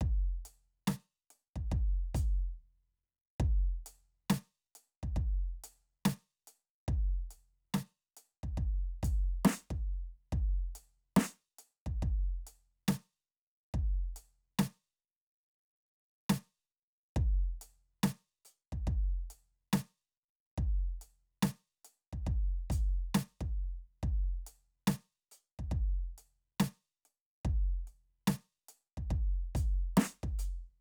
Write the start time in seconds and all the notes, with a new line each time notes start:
0.01 kick
0.45 closed hi-hat
0.88 snare
1.31 closed hi-hat
1.56 kick
1.72 kick
2.15 closed hi-hat, kick
3.40 kick
3.86 closed hi-hat
4.30 snare
4.75 closed hi-hat
5.03 kick
5.16 kick
5.64 closed hi-hat
6.05 snare
6.48 closed hi-hat
6.88 kick
7.31 closed hi-hat
7.74 snare
8.17 closed hi-hat
8.43 kick
8.58 kick
9.03 kick, closed hi-hat
9.45 snare
9.71 kick
10.33 kick
10.75 closed hi-hat
11.17 snare
11.59 closed hi-hat
11.86 kick
12.03 kick
12.47 closed hi-hat
12.88 snare
13.74 kick
14.16 closed hi-hat
14.59 snare
16.30 snare
17.16 kick, ride
17.61 closed hi-hat
18.03 snare
18.45 closed hi-hat
18.72 kick
18.87 kick
19.30 closed hi-hat
19.73 snare
20.58 kick, crash, ride
21.01 closed hi-hat
21.43 snare
21.85 closed hi-hat
22.13 kick
22.27 kick
22.70 closed hi-hat, kick, snare
23.15 snare
23.41 kick
24.03 kick, ride
24.47 closed hi-hat
24.87 snare
25.32 closed hi-hat
25.59 kick
25.71 kick
26.18 closed hi-hat
26.60 snare
27.05 closed hi-hat
27.45 kick, crash, ride
27.87 closed hi-hat
28.28 snare
28.69 closed hi-hat
28.97 kick
29.11 kick, crash
29.55 closed hi-hat, kick
29.97 snare
30.23 kick
30.39 closed hi-hat